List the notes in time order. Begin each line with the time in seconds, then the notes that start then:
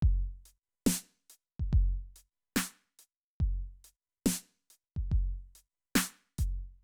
0.03 kick, crash, ride
0.46 closed hi-hat
0.87 snare
1.30 closed hi-hat
1.60 kick
1.73 kick
1.79 ride
2.16 closed hi-hat
2.56 snare
2.99 closed hi-hat
3.41 kick
3.45 crash
3.85 closed hi-hat
4.26 snare
4.71 closed hi-hat
4.97 kick
5.12 kick, crash
5.16 ride
5.56 closed hi-hat
5.96 snare
6.39 kick, closed hi-hat